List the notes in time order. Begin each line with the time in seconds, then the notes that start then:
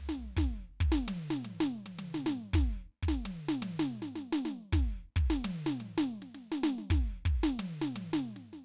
0.09 snare
0.37 kick, snare
0.48 hi-hat pedal
0.81 kick
0.92 snare
1.06 hi-hat pedal, high tom
1.31 snare
1.45 high tom
1.61 snare, hi-hat pedal
1.86 high tom
1.99 high tom
2.15 snare, hi-hat pedal
2.27 snare
2.54 kick, snare
2.71 hi-hat pedal
3.03 kick
3.09 snare
3.25 hi-hat pedal, high tom
3.49 snare
3.63 high tom
3.78 snare, hi-hat pedal
4.03 snare
4.16 snare
4.32 snare, hi-hat pedal
4.46 snare
4.73 kick, snare
4.88 hi-hat pedal
5.17 kick
5.31 snare
5.43 hi-hat pedal, high tom
5.67 snare
5.81 high tom
5.94 snare, hi-hat pedal
6.22 snare
6.35 snare
6.51 snare, hi-hat pedal
6.64 snare
6.79 snare
6.91 kick, snare
7.04 hi-hat pedal
7.26 kick
7.44 snare
7.59 hi-hat pedal, high tom
7.82 snare
7.96 high tom
8.13 snare, hi-hat pedal
8.37 snare
8.54 snare